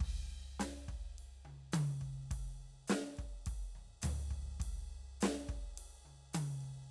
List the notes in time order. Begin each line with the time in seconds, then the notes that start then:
0.01 kick, crash
0.60 snare, hi-hat pedal, ride
0.89 kick, ride
1.19 ride
1.46 high tom
1.73 hi-hat pedal, high tom, ride
2.02 kick, ride
2.31 kick, ride
2.57 ride
2.88 snare, hi-hat pedal, ride
3.18 kick, ride
3.47 kick, ride
3.76 floor tom
4.02 floor tom, hi-hat pedal, ride
4.31 kick
4.60 kick, ride
5.21 snare, hi-hat pedal, ride
5.49 kick, ride
5.78 ride
6.06 high tom
6.34 hi-hat pedal, high tom, ride
6.62 kick, ride